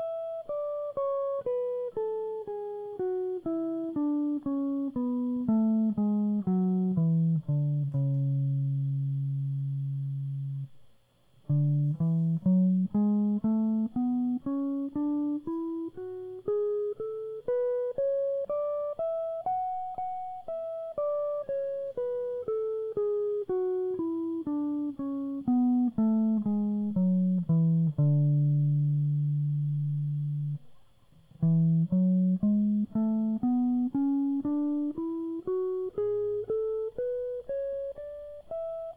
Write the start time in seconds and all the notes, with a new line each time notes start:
0.00 E5
0.50 D5
0.98 C#5
1.47 B4
1.97 A4
2.48 G#4
3.00 F#4
3.47 E4
3.97 D4
4.47 C#4
4.97 B3
5.50 A3
5.99 G#3
6.48 F#3
6.99 E3
7.51 D3
7.96 C#3
11.52 D3
12.02 E3
12.47 F#3
12.96 G#3
13.45 A3
13.97 B3
14.47 C#4
14.96 D4
15.48 E4
16.00 F#4
16.49 G#4
16.99 A4
17.49 B4
17.99 C#5
18.50 D5
19.00 E5
19.47 F#5
19.99 F#5
20.49 E5
20.98 D5
21.49 C#5
21.98 B4
22.49 A4
22.98 G#4
23.50 F#4
24.00 E4
24.48 D4
25.00 C#4
25.49 B3
25.99 A3
26.47 G#3
26.97 F#3
27.51 E3
28.00 D3
31.44 E3
31.94 F#3
32.44 G#3
32.96 A3
33.44 B3
33.96 C#4
34.46 D4
34.99 E4
35.48 F#4
35.99 G#4
36.50 A4
36.99 B4
37.50 C#5
38.00 D5
38.52 E5